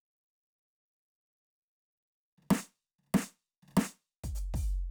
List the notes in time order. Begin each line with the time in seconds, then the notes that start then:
2.38 snare
2.42 snare
2.49 snare
2.51 snare
2.99 snare
3.04 snare
3.07 snare
3.14 snare
3.63 snare
3.68 snare
3.71 snare
3.77 snare
4.24 closed hi-hat, kick
4.36 hi-hat pedal
4.54 open hi-hat, kick